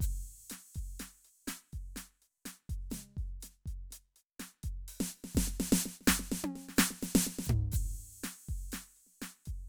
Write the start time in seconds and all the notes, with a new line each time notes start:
0.01 kick, hi-hat pedal, crash
0.07 kick
0.10 kick
0.50 closed hi-hat, snare
0.75 closed hi-hat, kick
0.98 closed hi-hat, snare, hi-hat pedal
1.25 closed hi-hat
1.45 closed hi-hat, snare, hi-hat pedal
1.73 kick, closed hi-hat
1.96 closed hi-hat, snare
2.22 closed hi-hat
2.46 closed hi-hat, snare
2.70 open hi-hat, kick
2.79 snare
2.91 closed hi-hat, snare, hi-hat pedal, mid tom
3.17 kick, snare, closed hi-hat
3.41 closed hi-hat, snare, hi-hat pedal
3.66 kick, closed hi-hat
3.91 closed hi-hat, snare, hi-hat pedal
4.17 closed hi-hat
4.40 closed hi-hat, snare
4.64 closed hi-hat, kick
4.89 open hi-hat
5.01 snare
5.24 snare
5.34 kick, snare, hi-hat pedal
5.41 kick
5.44 kick, snare
5.60 snare
5.73 snare
5.86 snare
6.01 snare, hi-hat pedal
6.08 kick, snare
6.20 snare
6.32 snare
6.44 hi-hat pedal, high tom
6.56 snare
6.69 snare
6.77 snare, hi-hat pedal
6.91 snare
7.02 snare, hi-hat pedal
7.16 snare
7.21 hi-hat pedal
7.27 snare
7.39 snare
7.43 hi-hat pedal
7.47 kick, floor tom
7.72 kick, hi-hat pedal
7.77 kick, crash
7.84 kick
8.24 closed hi-hat, snare
8.49 kick, closed hi-hat
8.72 open hi-hat, snare
8.97 closed hi-hat
9.07 snare
9.22 closed hi-hat, snare
9.46 closed hi-hat, kick